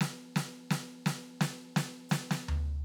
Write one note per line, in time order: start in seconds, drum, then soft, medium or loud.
0.01 snare loud
0.36 snare loud
0.71 snare loud
1.06 snare loud
1.41 snare loud
1.76 snare loud
2.09 snare loud
2.09 hi-hat pedal medium
2.31 snare loud
2.49 floor tom loud